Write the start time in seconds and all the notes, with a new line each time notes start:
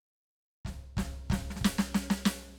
0.65 kick, snare, floor tom
0.97 kick, snare, floor tom
1.30 kick, snare, floor tom
1.50 snare
1.56 snare
1.61 kick, snare
1.78 snare
1.94 snare
2.10 snare
2.25 snare